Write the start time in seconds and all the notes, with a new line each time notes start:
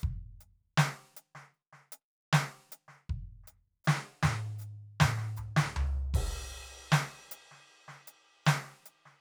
0.01 kick, hi-hat pedal
0.05 snare
0.41 closed hi-hat
0.78 snare
1.17 closed hi-hat
1.36 snare
1.55 closed hi-hat
1.73 snare
1.93 closed hi-hat
2.33 snare
2.51 snare
2.73 closed hi-hat
2.89 snare
3.10 kick
3.44 open hi-hat, snare
3.85 snare, hi-hat pedal
4.23 snare, mid tom
4.59 closed hi-hat, hi-hat pedal
5.01 snare, mid tom
5.18 snare
5.37 floor tom, hi-hat pedal
5.57 snare
5.77 floor tom
6.14 kick, crash
6.37 snare
6.54 open hi-hat
6.92 snare
7.13 snare
7.32 closed hi-hat
7.52 snare
7.89 snare
8.08 closed hi-hat
8.46 snare, hi-hat pedal
8.65 snare
8.86 closed hi-hat
9.06 snare